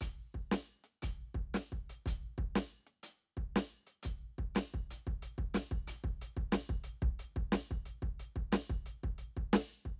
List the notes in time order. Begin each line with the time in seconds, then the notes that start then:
0.01 closed hi-hat, kick
0.34 kick
0.51 closed hi-hat, snare
0.84 closed hi-hat
1.02 closed hi-hat, kick
1.34 kick
1.54 closed hi-hat, snare
1.72 kick
1.89 closed hi-hat
2.06 closed hi-hat, kick
2.38 kick
2.55 closed hi-hat, snare
2.87 closed hi-hat
3.03 closed hi-hat
3.37 kick
3.56 closed hi-hat, snare
3.87 closed hi-hat
4.03 closed hi-hat, kick
4.38 kick
4.55 closed hi-hat, snare
4.74 kick
4.90 closed hi-hat
5.07 kick
5.22 closed hi-hat
5.38 kick
5.54 closed hi-hat, snare
5.71 kick
5.87 closed hi-hat
6.04 kick
6.21 closed hi-hat
6.37 kick
6.52 closed hi-hat, snare
6.69 kick
6.84 closed hi-hat
7.02 kick
7.19 closed hi-hat
7.36 kick
7.52 closed hi-hat, snare
7.71 kick
7.85 closed hi-hat
8.02 kick
8.19 closed hi-hat
8.36 kick
8.52 closed hi-hat, snare
8.69 kick
8.86 closed hi-hat
9.03 kick
9.18 closed hi-hat
9.37 kick
9.53 closed hi-hat, snare
9.85 kick